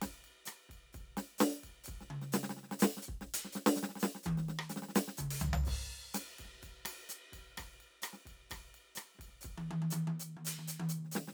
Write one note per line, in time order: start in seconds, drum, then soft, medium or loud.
0.01 kick soft
0.01 snare medium
0.01 hi-hat pedal soft
0.01 ride medium
0.09 kick soft
0.24 ride soft
0.45 cross-stick medium
0.45 hi-hat pedal medium
0.45 ride medium
0.69 kick soft
0.69 ride soft
0.74 kick soft
0.93 kick soft
0.93 hi-hat pedal soft
0.93 ride soft
0.99 kick soft
1.17 snare medium
1.17 ride medium
1.38 snare loud
1.38 hi-hat pedal medium
1.38 ride medium
1.63 kick soft
1.63 ride soft
1.68 kick soft
1.68 snare soft
1.72 snare soft
1.84 hi-hat pedal medium
1.84 ride medium
1.88 kick soft
2.00 snare soft
2.10 mid tom medium
2.21 snare soft
2.32 snare loud
2.32 hi-hat pedal medium
2.43 snare medium
2.49 snare medium
2.56 snare soft
2.63 snare soft
2.68 snare soft
2.71 snare medium
2.79 snare loud
2.79 hi-hat pedal loud
2.97 snare soft
3.02 hi-hat pedal medium
3.08 kick soft
3.16 kick soft
3.21 snare soft
3.34 closed hi-hat loud
3.44 snare soft
3.52 snare medium
3.52 hi-hat pedal medium
3.66 snare loud
3.76 snare medium
3.76 hi-hat pedal medium
3.83 snare medium
3.89 snare soft
3.95 snare soft
3.95 hi-hat pedal medium
4.03 snare loud
4.15 snare soft
4.23 kick soft
4.23 hi-hat pedal medium
4.23 high tom medium
4.31 kick soft
4.37 snare soft
4.48 snare soft
4.59 cross-stick medium
4.69 snare soft
4.69 hi-hat pedal medium
4.76 snare medium
4.82 snare soft
4.88 snare soft
4.95 snare loud
4.95 hi-hat pedal loud
5.08 snare soft
5.17 kick soft
5.17 hi-hat pedal medium
5.17 mid tom medium
5.25 kick soft
5.31 closed hi-hat medium
5.39 floor tom medium
5.39 hi-hat pedal medium
5.44 kick soft
5.53 floor tom loud
5.64 kick soft
5.64 hi-hat pedal soft
5.64 crash medium
5.64 floor tom soft
5.73 kick soft
6.14 snare medium
6.14 hi-hat pedal medium
6.14 ride loud
6.38 kick soft
6.38 ride medium
6.44 kick soft
6.44 snare soft
6.62 kick soft
6.62 hi-hat pedal soft
6.62 ride soft
6.85 cross-stick medium
6.85 ride loud
7.09 hi-hat pedal medium
7.09 ride soft
7.32 kick soft
7.32 ride medium
7.38 kick soft
7.57 kick soft
7.57 cross-stick medium
7.57 hi-hat pedal soft
7.57 ride medium
7.63 kick soft
7.80 ride soft
8.02 cross-stick medium
8.02 hi-hat pedal medium
8.02 ride medium
8.13 snare soft
8.25 kick soft
8.25 ride soft
8.30 kick soft
8.50 kick soft
8.50 cross-stick medium
8.50 hi-hat pedal soft
8.50 ride medium
8.56 kick soft
8.74 ride soft
8.95 cross-stick medium
8.95 hi-hat pedal medium
8.95 ride medium
9.14 snare soft
9.19 kick soft
9.19 ride soft
9.24 kick soft
9.24 snare soft
9.41 kick soft
9.41 hi-hat pedal medium
9.41 ride medium
9.57 high tom medium
9.71 high tom medium
9.82 high tom medium
9.90 hi-hat pedal loud
9.90 high tom medium
10.07 high tom medium
10.19 hi-hat pedal medium
10.37 high tom soft
10.45 closed hi-hat loud
10.45 hi-hat pedal medium
10.59 high tom soft
10.68 closed hi-hat medium
10.68 hi-hat pedal medium
10.80 high tom medium
10.89 hi-hat pedal medium
10.94 mid tom soft
11.05 snare soft
11.11 snare medium
11.11 hi-hat pedal medium
11.27 snare soft